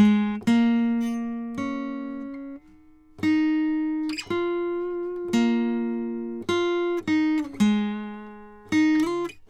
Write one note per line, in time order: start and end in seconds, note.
0.00 0.42 G#3
0.49 2.29 A#3
1.59 2.62 C#4
3.25 4.21 D#4
4.32 6.46 F4
5.35 6.46 A#3
6.50 7.05 F4
7.09 7.49 D#4
7.62 8.73 G#3
8.74 9.04 D#4
9.05 9.32 F4